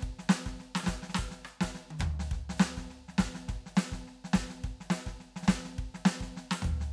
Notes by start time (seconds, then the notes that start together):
0.01 kick, snare
0.09 kick
0.19 snare
0.30 snare, hi-hat pedal
0.47 kick, snare
0.60 snare
0.76 snare
0.81 cross-stick, snare
0.87 kick, snare, hi-hat pedal
0.94 kick
1.03 snare
1.10 snare
1.15 kick, snare
1.26 kick
1.32 snare
1.46 cross-stick, hi-hat pedal
1.61 kick, snare
1.75 snare
1.91 high tom
2.00 kick, hi-hat pedal, floor tom
2.20 snare
2.32 kick, snare
2.39 kick
2.50 snare
2.58 snare, hi-hat pedal
2.78 kick, snare
2.91 snare
3.09 snare
3.19 kick, snare, hi-hat pedal
3.26 kick
3.29 kick
3.35 snare
3.49 kick, snare
3.56 kick
3.67 snare
3.76 snare, hi-hat pedal
3.92 kick, snare
4.08 snare
4.25 snare
4.34 kick, snare, hi-hat pedal
4.42 kick
4.50 snare
4.64 kick, snare
4.72 kick
4.81 snare
4.91 snare, hi-hat pedal
5.07 kick, snare
5.21 snare
5.37 snare
5.43 snare
5.48 kick, snare, hi-hat pedal
5.66 snare
5.79 kick, snare
5.86 kick
5.95 snare
6.06 snare, hi-hat pedal
6.21 kick, snare
6.37 snare
6.52 snare
6.63 kick, floor tom, hi-hat pedal
6.72 kick
6.75 kick
6.81 snare